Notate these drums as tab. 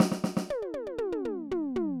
Snare     |oooo------------|
High tom  |----oooo--------|
Mid tom   |--------ooo-----|
Floor tom |------------o-o-|